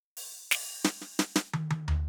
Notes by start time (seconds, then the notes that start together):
0.17 open hi-hat
0.51 open hi-hat, snare
0.85 snare
1.01 snare
1.19 snare
1.36 snare
1.47 hi-hat pedal
1.53 high tom
1.71 high tom
1.88 floor tom